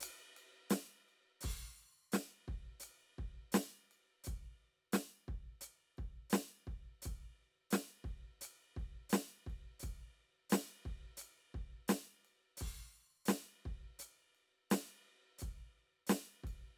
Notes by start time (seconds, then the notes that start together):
0.01 hi-hat pedal, ride
0.37 ride
0.70 snare, hi-hat pedal, ride
1.09 ride
1.41 kick, hi-hat pedal, crash
2.12 snare, hi-hat pedal, ride
2.48 kick
2.80 hi-hat pedal, ride
3.18 kick
3.52 snare, hi-hat pedal, ride
3.91 ride
4.24 kick, hi-hat pedal, ride
4.93 snare, hi-hat pedal, ride
5.28 kick
5.61 hi-hat pedal, ride
5.98 kick, ride
6.30 snare, hi-hat pedal, ride
6.67 kick
7.02 kick, hi-hat pedal, ride
7.71 snare, hi-hat pedal, ride
8.04 kick
8.41 hi-hat pedal
8.45 ride
8.77 kick, ride
9.10 snare, hi-hat pedal, ride
9.47 kick, ride
9.80 kick, hi-hat pedal
9.84 ride
10.50 snare, hi-hat pedal, ride
10.85 kick
11.17 hi-hat pedal
11.22 ride
11.54 kick
11.88 snare, hi-hat pedal, ride
12.25 ride
12.57 kick, hi-hat pedal, crash
13.26 snare, hi-hat pedal
13.30 ride
13.65 kick
13.99 hi-hat pedal, ride
14.35 ride
14.70 snare, hi-hat pedal, ride
15.39 kick, hi-hat pedal, ride
16.07 snare, hi-hat pedal, ride
16.44 kick, ride